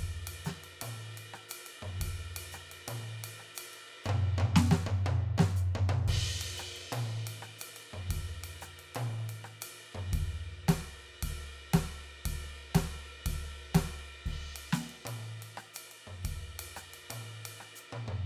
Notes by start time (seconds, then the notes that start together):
0.28 ride
0.45 snare, hi-hat pedal
0.64 ride
0.82 mid tom, ride
1.18 ride
1.34 cross-stick
1.49 hi-hat pedal, ride
1.67 ride
1.83 floor tom
2.01 kick, ride
2.37 ride
2.53 cross-stick, hi-hat pedal
2.72 ride
2.88 mid tom, ride
3.24 ride
3.40 cross-stick
3.55 hi-hat pedal, ride
3.74 ride
4.04 floor tom, hi-hat pedal
4.10 mid tom
4.39 floor tom, mid tom
4.56 snare, hi-hat pedal
4.72 snare
4.87 floor tom
5.05 hi-hat pedal, mid tom
5.38 snare, floor tom
5.57 hi-hat pedal
5.76 floor tom
5.90 mid tom
6.08 kick, ride
6.42 ride
6.58 cross-stick, hi-hat pedal
6.77 ride
6.93 mid tom, ride
7.27 ride
7.43 cross-stick
7.59 hi-hat pedal, ride
7.77 ride
7.94 floor tom
8.10 kick, ride
8.44 ride
8.62 cross-stick, hi-hat pedal
8.80 ride
8.95 mid tom, ride
9.10 hi-hat pedal
9.30 ride
9.45 cross-stick
9.62 hi-hat pedal, ride
9.95 floor tom
10.13 kick, ride
10.69 kick, snare, ride
11.23 kick, ride
11.74 kick, snare, ride
12.26 kick, ride
12.75 kick, snare, ride
13.26 kick, ride
13.55 ride
13.62 ride
13.75 kick, snare, ride
14.26 kick, ride
14.56 ride
14.73 snare, hi-hat pedal
14.90 ride
15.06 mid tom, ride
15.43 ride
15.58 cross-stick
15.74 hi-hat pedal, ride
15.92 ride
16.08 floor tom
16.23 kick, hi-hat pedal, ride
16.60 ride
16.76 cross-stick, hi-hat pedal
16.94 ride
17.11 mid tom, ride
17.46 ride
17.61 cross-stick
17.76 hi-hat pedal, ride bell
17.93 mid tom
18.08 floor tom